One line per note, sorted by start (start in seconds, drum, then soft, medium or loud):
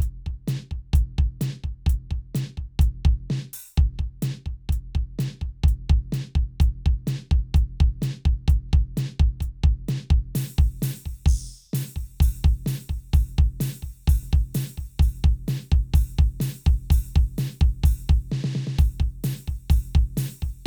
0.01 closed hi-hat medium
0.01 kick medium
0.28 kick medium
0.50 closed hi-hat loud
0.50 snare loud
0.73 kick medium
0.95 closed hi-hat loud
0.95 kick loud
1.20 kick loud
1.43 closed hi-hat loud
1.43 snare loud
1.51 snare soft
1.66 kick medium
1.88 closed hi-hat loud
1.88 kick loud
2.13 kick medium
2.37 closed hi-hat loud
2.37 snare loud
2.59 kick medium
2.81 closed hi-hat loud
2.81 kick loud
3.07 kick loud
3.32 snare loud
3.40 snare soft
3.55 open hi-hat loud
3.77 kick loud
3.77 hi-hat pedal soft
3.96 snare soft
4.01 kick medium
4.24 closed hi-hat loud
4.24 snare loud
4.48 kick medium
4.71 closed hi-hat medium
4.71 kick medium
4.97 kick medium
5.21 closed hi-hat medium
5.21 snare loud
5.30 snare soft
5.38 snare soft
5.43 kick medium
5.66 kick loud
5.70 closed hi-hat medium
5.92 kick loud
6.14 closed hi-hat medium
6.14 snare loud
6.37 kick loud
6.62 closed hi-hat medium
6.62 kick loud
6.88 kick loud
7.09 closed hi-hat medium
7.09 snare loud
7.17 snare soft
7.33 kick loud
7.56 closed hi-hat medium
7.56 kick loud
7.79 kick loud
7.79 snare soft
8.04 closed hi-hat loud
8.04 snare loud
8.27 kick loud
8.50 closed hi-hat medium
8.50 kick loud
8.71 kick loud
8.71 snare soft
8.99 closed hi-hat loud
8.99 snare loud
9.22 kick loud
9.43 closed hi-hat medium
9.43 kick medium
9.66 kick loud
9.91 closed hi-hat medium
9.91 snare loud
10.04 snare soft
10.12 kick loud
10.37 open hi-hat loud
10.37 snare loud
10.50 snare soft
10.60 kick loud
10.84 open hi-hat loud
10.84 snare loud
10.93 snare soft
11.08 kick medium
11.28 kick loud
11.28 crash loud
11.75 open hi-hat loud
11.75 snare loud
11.98 kick medium
12.22 open hi-hat loud
12.22 kick loud
12.46 kick loud
12.68 open hi-hat loud
12.68 snare loud
12.91 kick medium
13.15 open hi-hat medium
13.15 kick loud
13.40 kick loud
13.62 open hi-hat loud
13.62 snare loud
13.84 kick soft
14.10 open hi-hat loud
14.10 kick loud
14.25 snare soft
14.35 kick loud
14.57 open hi-hat loud
14.57 snare loud
14.80 kick medium
15.01 open hi-hat medium
15.01 kick loud
15.26 kick loud
15.50 open hi-hat medium
15.50 snare loud
15.74 kick loud
15.96 open hi-hat medium
15.96 kick loud
16.21 kick loud
16.42 open hi-hat loud
16.42 snare loud
16.68 kick loud
16.92 open hi-hat loud
16.92 kick loud
17.18 kick loud
17.40 open hi-hat medium
17.40 snare loud
17.63 kick loud
17.86 open hi-hat loud
17.86 kick loud
18.03 snare soft
18.11 kick loud
18.34 snare loud
18.46 snare loud
18.57 snare loud
18.69 snare loud
18.81 open hi-hat medium
18.81 kick loud
19.02 kick loud
19.26 open hi-hat loud
19.26 snare loud
19.42 snare soft
19.50 kick medium
19.72 open hi-hat medium
19.72 kick loud
19.97 kick loud
20.19 open hi-hat loud
20.19 snare loud
20.44 kick medium